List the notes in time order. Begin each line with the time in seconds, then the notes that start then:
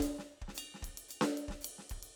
0.01 kick, hi-hat pedal, ride bell
0.19 snare
0.32 ride
0.42 kick
0.49 snare
0.55 hi-hat pedal, ride bell
0.75 snare
0.81 kick, snare
0.85 snare, ride
0.88 snare
0.94 snare
0.98 ride
1.09 hi-hat pedal, ride bell
1.22 snare
1.38 ride
1.49 kick, snare
1.62 hi-hat pedal, ride
1.79 snare
1.88 kick, cross-stick, ride
2.03 ride